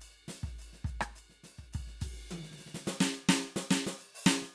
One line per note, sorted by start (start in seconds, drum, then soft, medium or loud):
0.01 hi-hat pedal medium
0.01 ride bell medium
0.28 snare medium
0.28 hi-hat pedal medium
0.28 ride medium
0.44 kick soft
0.44 snare soft
0.59 hi-hat pedal medium
0.59 ride bell medium
0.73 snare soft
0.85 kick medium
0.85 hi-hat pedal medium
0.89 ride soft
1.01 cross-stick medium
1.16 hi-hat pedal medium
1.16 ride bell medium
1.30 snare soft
1.44 snare soft
1.44 hi-hat pedal medium
1.44 ride soft
1.58 kick soft
1.58 ride soft
1.73 kick medium
1.73 hi-hat pedal medium
1.73 ride bell medium
1.88 snare soft
2.01 kick medium
2.01 hi-hat pedal medium
2.01 ride loud
2.15 snare soft
2.30 hi-hat pedal medium
2.30 high tom loud
2.44 snare soft
2.52 snare soft
2.58 snare soft
2.58 hi-hat pedal medium
2.67 snare soft
2.75 snare medium
2.86 snare loud
2.86 hi-hat pedal medium
3.01 snare loud
3.13 hi-hat pedal medium
3.29 snare loud
3.41 hi-hat pedal medium
3.56 snare loud
3.71 snare loud
3.71 hi-hat pedal medium
3.87 snare medium
3.98 hi-hat pedal medium
4.15 open hi-hat loud
4.27 snare loud
4.27 hi-hat pedal medium
4.42 snare soft